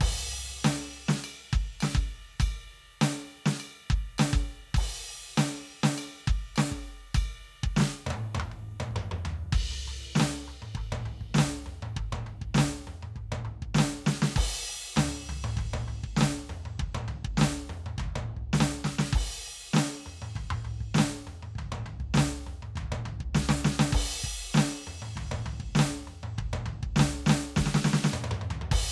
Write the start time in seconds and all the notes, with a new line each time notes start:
0.01 kick, crash
0.65 snare, ride bell
1.09 snare
1.25 ride bell
1.54 kick
1.81 snare, ride bell
1.96 kick
2.41 kick, ride bell
3.02 snare, ride bell
3.46 snare
3.61 ride bell
3.91 kick
4.19 snare, ride bell
4.34 kick
4.75 kick, ride bell, crash
5.38 snare, ride bell
5.84 snare
5.99 ride bell
6.28 kick
6.57 snare, ride bell
6.72 kick
7.15 kick, ride bell
7.64 kick
7.76 kick, snare
7.81 snare
8.07 kick, high tom
8.11 high tom
8.36 kick, high tom
8.41 high tom
8.52 mid tom
8.81 high tom
8.92 kick
8.97 mid tom
9.12 mid tom
9.26 floor tom
9.53 kick, ride
9.72 high tom
9.88 floor tom
10.16 snare, hi-hat pedal
10.21 snare
10.48 floor tom
10.63 high tom
10.76 kick, floor tom
10.93 high tom
11.06 floor tom
11.22 kick
11.35 snare
11.39 snare
11.67 mid tom
11.83 high tom
11.97 kick, floor tom
12.13 high tom
12.27 floor tom
12.42 kick
12.55 snare
12.59 snare
12.88 mid tom
13.03 high tom
13.17 kick, floor tom
13.33 high tom
13.46 floor tom
13.63 kick
13.75 snare
13.79 snare
14.07 snare
14.23 snare
14.37 kick, crash
14.97 snare, floor tom
15.30 floor tom
15.45 high tom
15.58 kick, floor tom
15.74 high tom
15.88 floor tom
16.04 kick
16.17 snare
16.22 snare
16.50 mid tom
16.66 high tom
16.80 kick, floor tom
16.95 high tom
17.09 floor tom
17.25 kick
17.38 snare
17.42 snare
17.70 mid tom
17.87 high tom
17.99 kick, floor tom
18.16 high tom
18.37 kick
18.54 snare
18.61 snare
18.85 kick, snare
18.99 snare
19.14 kick, snare, crash
19.74 snare, hi-hat pedal
19.77 snare
20.07 mid tom
20.23 high tom
20.36 kick, floor tom
20.51 high tom
20.65 floor tom
20.81 kick
20.95 snare
20.99 snare
21.28 mid tom
21.43 high tom
21.56 kick, floor tom
21.73 high tom
21.87 floor tom
22.01 kick
22.15 snare
22.18 snare
22.47 mid tom
22.63 high tom
22.76 kick, floor tom
22.93 high tom
23.06 floor tom
23.21 kick
23.35 snare
23.50 snare
23.65 snare
23.80 snare
23.93 kick, crash
24.25 kick
24.55 snare
24.58 snare
24.88 mid tom
25.03 high tom
25.17 kick, floor tom
25.32 high tom
25.47 floor tom
25.61 kick
25.76 snare
25.80 snare
26.08 mid tom
26.24 high tom
26.39 kick, floor tom
26.54 high tom
26.66 floor tom
26.84 kick
26.97 snare
27.00 snare
27.27 snare
27.30 snare
27.57 kick, snare
27.67 snare
27.75 snare
27.84 snare, hi-hat pedal
27.94 snare
28.05 snare
28.14 high tom
28.25 high tom
28.32 mid tom
28.42 high tom
28.51 floor tom
28.62 mid tom
28.72 kick, crash